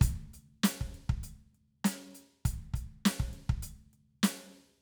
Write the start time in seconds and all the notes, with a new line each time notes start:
0.01 closed hi-hat, kick
0.33 closed hi-hat
0.63 closed hi-hat, snare
0.81 kick
0.94 closed hi-hat
1.09 kick
1.23 closed hi-hat
1.54 closed hi-hat
1.84 closed hi-hat, snare
2.15 closed hi-hat
2.45 closed hi-hat, kick
2.74 closed hi-hat, kick
3.05 closed hi-hat, snare
3.20 kick
3.33 closed hi-hat
3.49 kick
3.62 closed hi-hat
3.93 closed hi-hat
4.23 closed hi-hat, snare